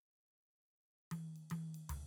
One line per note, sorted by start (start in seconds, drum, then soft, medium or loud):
1.11 high tom medium
1.11 ride soft
1.36 ride soft
1.50 high tom medium
1.50 ride soft
1.74 ride soft
1.89 floor tom medium
1.89 ride medium